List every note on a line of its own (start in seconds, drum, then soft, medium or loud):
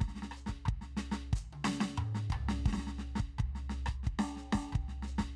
0.01 kick soft
0.01 snare soft
0.08 snare soft
0.14 snare soft
0.16 snare soft
0.23 snare soft
0.32 cross-stick medium
0.37 hi-hat pedal soft
0.47 kick soft
0.47 snare soft
0.66 kick soft
0.66 floor tom medium
0.82 snare soft
0.97 snare medium
0.97 hi-hat pedal medium
1.12 snare medium
1.33 kick soft
1.33 hi-hat pedal loud
1.43 kick soft
1.43 high tom soft
1.53 high tom medium
1.65 snare loud
1.81 snare medium
1.98 mid tom medium
2.15 snare soft
2.30 kick soft
2.30 floor tom medium
2.49 snare medium
2.66 kick medium
2.66 snare medium
2.73 snare medium
2.80 snare soft
2.87 snare soft
2.98 snare soft
2.98 hi-hat pedal soft
3.16 snare medium
3.20 kick soft
3.39 kick soft
3.39 floor tom medium
3.56 snare soft
3.70 snare soft
3.70 hi-hat pedal soft
3.87 kick soft
3.87 cross-stick medium
4.04 kick soft
4.04 snare soft
4.20 snare medium
4.37 snare soft
4.37 hi-hat pedal soft
4.53 kick soft
4.53 snare medium
4.73 kick soft
4.73 floor tom medium
4.89 snare soft
5.03 snare soft
5.07 hi-hat pedal soft
5.19 kick soft
5.19 snare medium